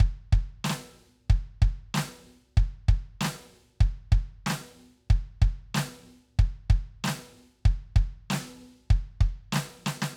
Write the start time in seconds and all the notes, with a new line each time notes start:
0.00 kick
0.33 kick
0.64 snare
0.69 snare
1.30 kick
1.62 kick
1.94 snare
1.97 snare
2.57 kick
2.88 kick
3.21 snare
3.25 snare
3.81 kick
4.12 kick
4.46 snare
4.50 snare
5.10 kick
5.42 kick
5.74 snare
5.77 snare
6.39 kick
6.70 kick
7.04 snare
7.08 snare
7.65 kick
7.96 kick
8.30 snare
8.33 snare
8.90 kick
9.21 kick
9.52 snare
9.56 snare
9.86 snare
10.02 snare